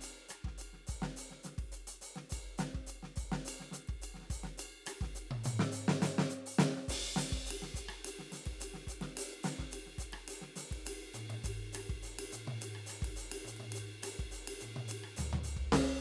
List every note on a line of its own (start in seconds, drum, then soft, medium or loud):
0.01 hi-hat pedal medium
0.01 ride bell medium
0.29 cross-stick medium
0.29 hi-hat pedal medium
0.29 ride bell soft
0.44 kick soft
0.44 snare soft
0.58 hi-hat pedal medium
0.58 ride bell medium
0.73 snare soft
0.87 kick soft
0.87 hi-hat pedal medium
0.87 ride bell soft
1.02 snare medium
1.02 ride soft
1.16 hi-hat pedal medium
1.16 ride bell medium
1.30 snare soft
1.43 snare soft
1.43 hi-hat pedal medium
1.43 ride soft
1.58 kick soft
1.58 ride soft
1.72 hi-hat pedal medium
1.72 ride bell soft
1.87 open hi-hat loud
2.01 hi-hat pedal medium
2.01 ride bell soft
2.16 snare soft
2.16 ride soft
2.30 kick soft
2.30 hi-hat pedal medium
2.30 ride bell medium
2.58 snare medium
2.58 hi-hat pedal medium
2.58 ride soft
2.74 kick soft
2.74 snare soft
2.87 hi-hat pedal medium
2.87 ride bell medium
3.03 snare soft
3.16 kick soft
3.16 hi-hat pedal medium
3.16 ride soft
3.32 snare medium
3.32 ride soft
3.45 hi-hat pedal medium
3.45 ride bell loud
3.60 snare soft
3.71 snare soft
3.71 hi-hat pedal loud
3.71 ride soft
3.88 kick soft
3.88 ride soft
4.02 hi-hat pedal medium
4.02 ride bell medium
4.14 snare soft
4.19 snare soft
4.21 snare soft
4.23 snare soft
4.30 kick soft
4.30 hi-hat pedal medium
4.30 ride soft
4.43 snare soft
4.43 ride soft
4.58 hi-hat pedal medium
4.58 ride bell loud
4.86 cross-stick medium
4.86 hi-hat pedal medium
4.86 ride loud
5.01 kick medium
5.01 snare soft
5.15 cross-stick soft
5.15 hi-hat pedal medium
5.15 ride medium
5.31 high tom medium
5.44 hi-hat pedal loud
5.44 high tom loud
5.59 snare medium
5.72 hi-hat pedal loud
5.88 snare loud
6.02 snare medium
6.02 hi-hat pedal medium
6.18 snare medium
6.30 hi-hat pedal medium
6.46 open hi-hat medium
6.59 snare loud
6.59 hi-hat pedal medium
6.69 snare soft
6.76 snare soft
6.81 snare soft
6.88 kick soft
6.88 hi-hat pedal loud
6.88 ride loud
7.16 snare medium
7.16 hi-hat pedal loud
7.32 kick medium
7.32 snare soft
7.46 hi-hat pedal medium
7.51 ride loud
7.62 snare soft
7.74 kick soft
7.74 hi-hat pedal loud
7.74 ride medium
7.89 cross-stick medium
7.89 ride medium
8.05 hi-hat pedal medium
8.05 ride loud
8.19 snare soft
8.32 snare soft
8.32 hi-hat pedal medium
8.32 ride medium
8.46 kick soft
8.46 ride medium
8.60 hi-hat pedal loud
8.60 ride loud
8.74 snare soft
8.87 kick soft
8.87 hi-hat pedal medium
8.87 ride medium
9.01 snare medium
9.01 ride medium
9.17 hi-hat pedal loud
9.17 ride loud
9.43 snare medium
9.43 hi-hat pedal medium
9.43 ride medium
9.58 kick soft
9.58 snare soft
9.71 hi-hat pedal medium
9.71 ride loud
9.86 snare soft
9.98 kick soft
9.98 hi-hat pedal medium
9.98 ride medium
10.12 cross-stick medium
10.12 ride medium
10.28 hi-hat pedal medium
10.28 ride loud
10.41 snare soft
10.56 snare soft
10.56 hi-hat pedal medium
10.56 ride medium
10.71 kick soft
10.71 ride medium
10.85 hi-hat pedal medium
10.85 ride loud
11.14 hi-hat pedal medium
11.14 high tom medium
11.14 ride medium
11.30 high tom medium
11.30 ride medium
11.44 kick soft
11.44 hi-hat pedal medium
11.44 ride medium
11.73 cross-stick medium
11.73 hi-hat pedal medium
11.73 ride loud
11.89 kick soft
12.03 hi-hat pedal medium
12.19 ride loud
12.32 hi-hat pedal loud
12.32 high tom soft
12.47 high tom medium
12.61 hi-hat pedal medium
12.61 ride loud
12.75 cross-stick soft
12.86 cross-stick soft
12.86 hi-hat pedal medium
12.91 ride soft
13.02 kick medium
13.02 ride medium
13.16 hi-hat pedal medium
13.32 ride loud
13.45 hi-hat pedal medium
13.45 high tom medium
13.57 high tom medium
13.57 ride medium
13.72 hi-hat pedal medium
13.72 ride loud
13.80 kick soft
14.03 cross-stick medium
14.03 hi-hat pedal medium
14.03 ride loud
14.19 kick soft
14.31 hi-hat pedal medium
14.48 ride loud
14.60 hi-hat pedal medium
14.60 high tom medium
14.76 high tom medium
14.88 hi-hat pedal loud
14.88 ride loud
15.04 cross-stick medium
15.16 floor tom medium
15.16 hi-hat pedal loud
15.33 floor tom loud
15.44 hi-hat pedal medium
15.57 kick soft
15.72 snare loud
15.72 hi-hat pedal soft
15.72 crash medium